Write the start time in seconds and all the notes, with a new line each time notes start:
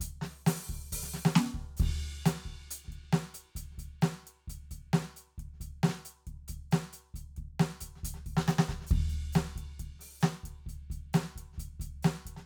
0.01 closed hi-hat, kick
0.22 open hi-hat, snare
0.47 open hi-hat, snare
0.67 open hi-hat, kick, snare
0.85 snare
0.93 open hi-hat, kick
1.03 snare
1.14 snare
1.26 snare
1.32 snare, hi-hat pedal
1.55 kick
1.77 kick, hi-hat pedal
1.82 crash
2.01 closed hi-hat
2.26 closed hi-hat, snare
2.46 kick
2.71 closed hi-hat
2.85 kick, snare
2.93 closed hi-hat
3.13 snare
3.35 closed hi-hat, kick
3.56 closed hi-hat, kick
3.72 snare
3.79 closed hi-hat, kick
4.02 snare, hi-hat pedal
4.27 closed hi-hat
4.48 closed hi-hat, kick
4.71 closed hi-hat, kick
4.94 snare
5.00 snare
5.17 closed hi-hat
5.38 kick, closed hi-hat
5.54 snare
5.61 closed hi-hat, kick
5.84 snare, hi-hat pedal
5.89 snare
6.06 closed hi-hat
6.27 kick, closed hi-hat
6.48 closed hi-hat, kick
6.72 snare, hi-hat pedal
6.93 closed hi-hat
7.15 closed hi-hat, kick
7.37 kick, closed hi-hat
7.60 snare, hi-hat pedal
7.81 closed hi-hat, kick
7.96 snare
8.04 closed hi-hat, kick
8.15 snare
8.27 kick, open hi-hat
8.37 snare
8.48 snare, hi-hat pedal
8.59 snare
8.69 kick, snare
8.81 snare
8.87 hi-hat pedal
8.91 kick, crash
9.10 closed hi-hat
9.33 snare, hi-hat pedal
9.56 kick, closed hi-hat
9.80 kick, closed hi-hat
10.00 open hi-hat, snare
10.21 snare, hi-hat pedal
10.44 kick, closed hi-hat
10.65 kick, snare
10.69 closed hi-hat
10.91 closed hi-hat, kick
11.14 snare, hi-hat pedal
11.20 snare
11.36 kick, closed hi-hat
11.54 snare
11.58 closed hi-hat, kick
11.80 closed hi-hat, kick
12.03 snare, hi-hat pedal
12.26 kick, closed hi-hat
12.37 snare